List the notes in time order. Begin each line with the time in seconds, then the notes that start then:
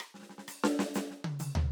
0.02 cross-stick, hi-hat pedal
0.14 snare
0.19 snare
0.22 snare
0.29 snare
0.38 snare
0.48 cross-stick, hi-hat pedal
0.64 snare
0.79 snare
0.94 snare, hi-hat pedal
1.10 snare
1.24 high tom
1.39 hi-hat pedal, high tom
1.55 floor tom